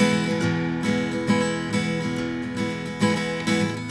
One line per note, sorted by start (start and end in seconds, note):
0.00 0.12 B2
0.00 0.12 E3
0.00 0.12 G#3
0.00 0.12 B3
0.12 0.30 B2
0.12 0.31 E3
0.12 0.28 G#3
0.12 0.25 B3
0.25 0.87 G#3
0.25 0.83 B3
0.25 0.83 E4
0.31 0.44 B2
0.31 0.45 E3
0.44 1.91 E2
0.44 0.88 B2
0.44 0.87 E3
0.85 2.06 B2
0.85 1.00 E3
0.85 1.13 G#3
0.85 1.13 B3
0.85 1.11 E4
1.00 1.16 E3
1.11 1.29 G#3
1.11 1.31 E4
1.16 1.29 E3
1.29 1.76 E3
1.29 1.75 G#3
1.29 1.42 B3
1.29 1.42 E4
1.42 1.72 B3
1.42 1.72 E4
1.75 1.87 E3
1.75 1.87 G#3
1.75 1.99 B3
1.75 2.00 E4
1.87 2.20 E2
1.87 2.04 E3
1.87 2.02 G#3
2.00 2.34 G#3
2.00 2.57 B3
2.00 2.53 E4
2.06 2.18 B2
2.06 2.44 E4
2.18 3.91 E2
2.18 2.44 B2
2.34 2.59 G#3
2.44 2.61 B2
2.44 2.59 E3
2.58 2.73 B2
2.58 2.70 E3
2.58 2.87 G#3
2.58 2.88 B3
2.58 2.85 E4
2.73 3.23 B2
2.73 2.88 E4
2.87 3.02 E3
2.87 3.01 G#3
2.87 3.03 B3
2.87 3.04 E4
3.02 3.20 E3
3.02 3.15 G#3
3.02 3.17 B3
3.02 3.15 E4
3.16 3.49 G#3
3.16 3.49 B3
3.16 3.46 E4
3.20 3.50 E3
3.49 3.61 B2
3.49 3.62 E3
3.49 3.79 G#3
3.49 3.61 B3
3.49 3.65 E4
3.61 3.69 B2
3.61 3.69 E3
3.61 3.79 B3
3.66 3.85 A2
3.66 3.76 E4
3.76 3.91 B3
3.76 3.86 E4